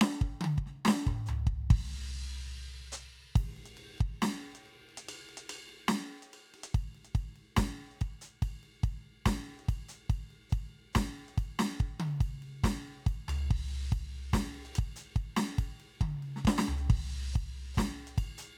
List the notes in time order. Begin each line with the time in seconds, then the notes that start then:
0.02 snare
0.21 kick
0.31 hi-hat pedal
0.41 high tom
0.44 high tom
0.58 kick
0.66 snare
0.85 snare
0.88 snare
1.07 kick, mid tom
1.26 floor tom, hi-hat pedal
1.47 kick
1.70 kick, crash
2.92 hi-hat pedal
3.35 kick, hi-hat pedal, ride
3.56 ride
3.66 closed hi-hat
3.77 ride
3.98 kick, ride
4.22 snare, ride bell
4.55 closed hi-hat
4.66 ride
4.89 ride
4.97 closed hi-hat
5.09 ride bell
5.29 ride
5.37 closed hi-hat
5.49 ride bell
5.69 ride
5.88 snare, ride bell
6.22 closed hi-hat
6.33 ride bell
6.54 ride
6.63 closed hi-hat
6.74 kick, ride bell
6.95 ride
7.04 closed hi-hat
7.15 kick, ride bell
7.36 ride
7.57 kick, snare, ride bell
7.80 ride
7.91 closed hi-hat
8.01 kick, ride bell
8.21 closed hi-hat
8.42 kick, ride bell
8.63 ride
8.83 kick, ride bell
9.26 kick, snare, ride
9.49 ride
9.59 closed hi-hat
9.68 kick, ride bell
9.88 closed hi-hat
10.10 kick, ride bell
10.30 ride
10.49 kick, hi-hat pedal, ride bell
10.75 ride
10.93 kick, snare, hi-hat pedal
10.97 ride bell
11.18 ride
11.28 closed hi-hat
11.37 kick, ride bell
11.59 snare
11.80 kick, ride bell
12.00 high tom
12.20 kick, ride bell
12.42 ride
12.64 kick, snare, ride bell
12.87 ride
13.06 kick, ride bell
13.28 floor tom, ride bell
13.51 kick, crash
13.92 kick, ride bell
14.14 ride
14.33 kick, snare, ride
14.55 ride
14.65 closed hi-hat
14.75 kick, ride bell
14.96 closed hi-hat
15.16 kick, ride bell
15.37 snare
15.58 kick, ride bell
15.80 ride
16.01 kick, high tom
16.22 ride
16.36 snare
16.45 kick, snare
16.58 snare
16.68 floor tom
16.78 closed hi-hat
16.90 kick, crash
17.33 kick, hi-hat pedal, ride bell
17.57 ride
17.74 kick, hi-hat pedal
17.78 snare, ride bell
18.00 ride
18.07 closed hi-hat
18.18 kick, ride bell
18.38 closed hi-hat